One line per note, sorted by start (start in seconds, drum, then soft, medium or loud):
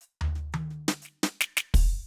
0.02 hi-hat pedal soft
0.21 floor tom loud
0.35 snare soft
0.52 hi-hat pedal soft
0.52 high tom loud
0.70 snare soft
0.88 snare loud
1.02 snare soft
1.02 hi-hat pedal medium
1.23 snare loud
1.41 snare loud
1.57 snare loud
1.74 open hi-hat medium
1.74 kick loud